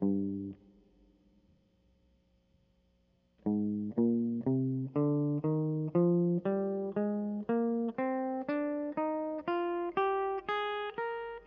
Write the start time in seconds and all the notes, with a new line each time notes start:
0.04 G2
3.48 G#2
4.00 A#2
4.48 C3
4.97 D3
5.45 D#3
5.96 F3
6.46 G3
6.97 G#3
7.50 A#3
7.99 C4
8.49 D4
8.98 D#4
9.48 F4
9.97 G4
10.49 G#4
10.98 A#4